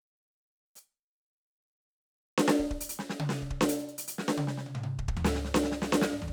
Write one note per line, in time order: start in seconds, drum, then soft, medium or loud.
0.76 hi-hat pedal medium
2.38 snare loud
2.59 kick soft
2.71 kick medium
2.81 closed hi-hat loud
2.89 closed hi-hat loud
2.99 snare medium
3.10 snare medium
3.20 high tom loud
3.29 snare loud
3.42 kick soft
3.51 kick medium
3.61 snare loud
3.69 closed hi-hat loud
3.89 closed hi-hat medium
3.98 closed hi-hat loud
4.08 closed hi-hat loud
4.18 snare medium
4.28 snare loud
4.38 high tom loud
4.47 snare medium
4.58 snare medium
4.66 high tom medium
4.75 mid tom loud
4.83 high tom loud
4.99 kick medium
5.08 kick medium
5.17 floor tom loud
5.25 snare loud
5.35 snare medium
5.45 snare medium
5.54 snare loud
5.64 snare medium
5.72 snare medium
5.82 snare loud
5.92 snare loud
6.02 snare loud
6.12 mid tom medium
6.22 floor tom loud
6.28 kick soft